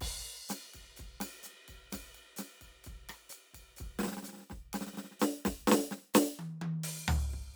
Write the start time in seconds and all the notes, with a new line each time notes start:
0.01 kick, hi-hat pedal, crash
0.10 kick
0.50 snare, hi-hat pedal, ride
0.74 kick, ride
0.81 kick, snare
0.97 kick, hi-hat pedal, ride
1.05 kick
1.21 snare, ride
1.44 snare, hi-hat pedal, ride
1.53 snare
1.69 kick, ride
1.74 kick
1.91 kick, snare, hi-hat pedal, ride
1.99 kick
2.15 ride
2.37 snare, hi-hat pedal, ride
2.62 kick, ride
2.84 kick, hi-hat pedal, ride
2.93 kick
3.10 cross-stick, ride
3.30 hi-hat pedal, ride
3.54 kick, ride
3.77 kick, hi-hat pedal, ride
3.87 kick
4.00 snare
4.04 snare
4.08 snare
4.13 snare
4.18 snare
4.23 snare, hi-hat pedal
4.29 snare
4.34 snare
4.37 snare
4.40 snare
4.42 snare
4.51 kick, snare
4.74 snare, ride
4.81 snare
4.87 snare
4.94 snare
4.98 snare
5.05 snare
5.12 snare
5.20 snare, hi-hat pedal
5.22 snare
5.46 kick, snare
5.67 snare, hi-hat pedal
5.72 snare
5.79 snare
5.92 snare
5.98 snare
6.03 snare
6.15 snare, hi-hat pedal
6.40 high tom
6.62 high tom
6.84 closed hi-hat
7.09 kick, floor tom
7.34 kick
7.40 kick